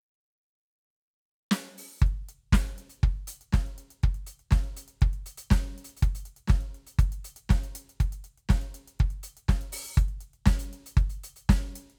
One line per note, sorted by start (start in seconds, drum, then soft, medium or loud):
1.51 snare loud
1.67 snare soft
1.70 snare soft
1.78 open hi-hat medium
1.98 kick loud
1.98 hi-hat pedal soft
2.06 closed hi-hat soft
2.29 closed hi-hat medium
2.52 kick loud
2.52 snare loud
2.78 closed hi-hat medium
2.90 closed hi-hat soft
3.03 kick loud
3.03 closed hi-hat soft
3.16 closed hi-hat soft
3.27 closed hi-hat loud
3.41 closed hi-hat medium
3.53 kick loud
3.53 snare medium
3.66 closed hi-hat soft
3.78 kick soft
3.78 closed hi-hat medium
3.91 closed hi-hat medium
4.03 kick loud
4.03 closed hi-hat soft
4.14 closed hi-hat soft
4.24 closed hi-hat medium
4.24 kick soft
4.39 closed hi-hat soft
4.51 kick loud
4.51 snare medium
4.64 closed hi-hat soft
4.77 closed hi-hat medium
4.88 closed hi-hat medium
5.01 kick loud
5.01 closed hi-hat soft
5.13 closed hi-hat soft
5.26 closed hi-hat medium
5.38 closed hi-hat medium
5.50 kick loud
5.50 snare loud
5.64 closed hi-hat soft
5.78 closed hi-hat medium
5.84 closed hi-hat medium
5.89 closed hi-hat soft
5.97 closed hi-hat medium
6.02 kick loud
6.02 closed hi-hat medium
6.15 closed hi-hat medium
6.25 closed hi-hat medium
6.36 closed hi-hat medium
6.48 kick loud
6.48 snare medium
6.61 closed hi-hat soft
6.75 closed hi-hat soft
6.87 closed hi-hat medium
6.99 kick loud
6.99 closed hi-hat medium
7.12 closed hi-hat medium
7.24 closed hi-hat medium
7.24 kick soft
7.36 closed hi-hat medium
7.49 kick loud
7.49 snare loud
7.64 closed hi-hat medium
7.72 kick soft
7.72 closed hi-hat loud
7.89 closed hi-hat medium
8.00 kick loud
8.00 closed hi-hat medium
8.12 closed hi-hat medium
8.24 closed hi-hat medium
8.38 closed hi-hat soft
8.49 kick loud
8.49 snare loud
8.61 closed hi-hat soft
8.74 closed hi-hat medium
8.88 closed hi-hat medium
8.99 kick loud
8.99 closed hi-hat soft
9.10 closed hi-hat soft
9.23 closed hi-hat medium
9.37 closed hi-hat medium
9.48 kick loud
9.48 snare medium
9.61 closed hi-hat medium
9.72 open hi-hat loud
9.87 open hi-hat soft
9.95 kick loud
9.95 closed hi-hat medium
9.95 hi-hat pedal soft
10.08 closed hi-hat soft
10.21 closed hi-hat medium
10.33 closed hi-hat soft
10.46 kick loud
10.46 snare loud
10.59 closed hi-hat medium
10.65 kick soft
10.73 closed hi-hat medium
10.86 closed hi-hat medium
10.97 kick loud
10.97 closed hi-hat soft
11.10 closed hi-hat soft
11.24 closed hi-hat medium
11.36 closed hi-hat medium
11.49 kick loud
11.49 snare loud
11.63 closed hi-hat soft
11.76 closed hi-hat medium
11.90 closed hi-hat soft